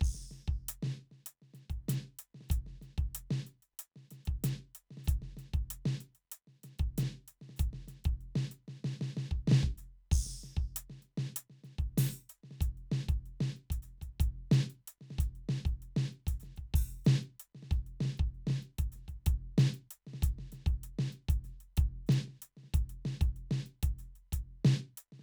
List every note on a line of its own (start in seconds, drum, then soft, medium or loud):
0.01 kick medium
0.01 crash medium
0.14 snare soft
0.31 snare soft
0.48 kick soft
0.68 closed hi-hat loud
0.83 snare medium
0.86 snare soft
1.11 snare soft
1.26 closed hi-hat medium
1.42 snare soft
1.54 snare soft
1.54 closed hi-hat soft
1.70 kick soft
1.70 closed hi-hat soft
1.89 open hi-hat loud
1.89 snare medium
1.93 snare soft
2.19 open hi-hat medium
2.34 snare soft
2.41 snare soft
2.49 closed hi-hat medium
2.49 kick medium
2.49 hi-hat pedal soft
2.66 snare soft
2.82 snare soft
2.82 closed hi-hat soft
2.98 kick medium
2.98 closed hi-hat soft
3.15 closed hi-hat loud
3.31 snare medium
3.47 closed hi-hat soft
3.62 closed hi-hat soft
3.79 closed hi-hat loud
3.96 snare soft
4.11 snare soft
4.11 closed hi-hat soft
4.25 closed hi-hat soft
4.25 kick soft
4.44 open hi-hat loud
4.44 snare medium
4.75 open hi-hat medium
4.91 snare soft
4.97 snare soft
5.04 kick medium
5.04 hi-hat pedal medium
5.08 closed hi-hat medium
5.22 snare soft
5.37 snare soft
5.37 closed hi-hat soft
5.54 kick medium
5.54 closed hi-hat soft
5.70 closed hi-hat loud
5.86 snare medium
6.00 closed hi-hat soft
6.15 closed hi-hat soft
6.32 closed hi-hat medium
6.47 snare soft
6.63 snare soft
6.63 closed hi-hat soft
6.79 closed hi-hat soft
6.79 kick medium
6.98 open hi-hat medium
6.98 snare medium
7.03 snare soft
7.28 open hi-hat medium
7.41 snare soft
7.49 snare soft
7.56 closed hi-hat medium
7.56 kick medium
7.56 hi-hat pedal medium
7.73 snare soft
7.88 snare soft
7.88 closed hi-hat soft
8.04 closed hi-hat soft
8.04 kick medium
8.21 closed hi-hat soft
8.36 snare medium
8.51 closed hi-hat soft
8.68 snare soft
8.84 snare medium
9.01 snare medium
9.17 snare medium
9.31 kick soft
9.47 snare medium
9.51 snare loud
9.63 kick soft
9.77 hi-hat pedal medium
10.11 kick medium
10.11 crash medium
10.26 snare soft
10.43 snare soft
10.57 kick medium
10.76 closed hi-hat loud
10.90 snare soft
11.02 closed hi-hat soft
11.17 snare medium
11.36 closed hi-hat loud
11.50 snare soft
11.64 snare soft
11.64 closed hi-hat soft
11.78 kick soft
11.78 closed hi-hat soft
11.98 open hi-hat loud
11.98 snare loud
12.29 open hi-hat medium
12.29 hi-hat pedal medium
12.44 snare soft
12.51 snare soft
12.61 closed hi-hat medium
12.61 kick medium
12.77 closed hi-hat soft
12.92 snare medium
13.09 kick medium
13.09 closed hi-hat soft
13.26 closed hi-hat soft
13.41 snare medium
13.56 closed hi-hat soft
13.70 open hi-hat medium
13.70 kick soft
13.82 hi-hat pedal medium
13.98 kick soft
13.98 snare soft
14.02 closed hi-hat soft
14.20 open hi-hat medium
14.20 kick medium
14.51 snare loud
14.51 hi-hat pedal medium
14.70 closed hi-hat soft
14.87 closed hi-hat medium
15.01 snare soft
15.10 snare soft
15.18 closed hi-hat medium
15.18 kick medium
15.35 closed hi-hat soft
15.49 snare medium
15.65 kick medium
15.65 closed hi-hat soft
15.82 closed hi-hat soft
15.96 snare medium
16.12 closed hi-hat soft
16.27 open hi-hat medium
16.27 kick soft
16.40 snare soft
16.40 hi-hat pedal medium
16.56 kick soft
16.56 closed hi-hat soft
16.74 open hi-hat medium
16.74 kick medium
17.04 snare loud
17.04 hi-hat pedal medium
17.22 closed hi-hat soft
17.40 closed hi-hat medium
17.55 snare soft
17.63 snare soft
17.71 kick medium
17.71 closed hi-hat soft
17.86 closed hi-hat soft
18.01 snare medium
18.05 snare soft
18.17 kick medium
18.17 closed hi-hat soft
18.34 closed hi-hat soft
18.47 snare medium
18.50 snare medium
18.62 closed hi-hat soft
18.78 open hi-hat medium
18.78 kick medium
18.92 snare soft
18.92 hi-hat pedal medium
19.08 kick soft
19.08 closed hi-hat soft
19.26 open hi-hat medium
19.26 kick medium
19.58 snare loud
19.58 hi-hat pedal medium
19.74 closed hi-hat soft
19.91 closed hi-hat medium
20.07 snare soft
20.14 snare soft
20.22 closed hi-hat medium
20.22 kick medium
20.39 snare soft
20.52 snare soft
20.52 closed hi-hat soft
20.66 kick medium
20.66 closed hi-hat soft
20.83 closed hi-hat medium
20.99 snare medium
21.12 closed hi-hat soft
21.29 open hi-hat medium
21.29 kick medium
21.44 snare soft
21.44 hi-hat pedal soft
21.60 closed hi-hat soft
21.77 closed hi-hat medium
21.77 kick medium
22.06 snare loud
22.06 hi-hat pedal soft
22.12 closed hi-hat soft
22.28 snare soft
22.42 closed hi-hat medium
22.57 snare soft
22.64 snare soft
22.68 snare soft
22.74 closed hi-hat medium
22.74 kick medium
22.89 closed hi-hat soft
23.05 snare medium
23.21 kick medium
23.21 closed hi-hat soft
23.36 closed hi-hat soft
23.51 snare medium
23.66 closed hi-hat soft
23.83 open hi-hat medium
23.83 kick medium
23.98 hi-hat pedal medium
24.15 closed hi-hat soft
24.32 open hi-hat medium
24.32 kick soft
24.65 snare loud
24.65 hi-hat pedal soft
24.97 closed hi-hat medium
25.12 snare soft
25.19 snare soft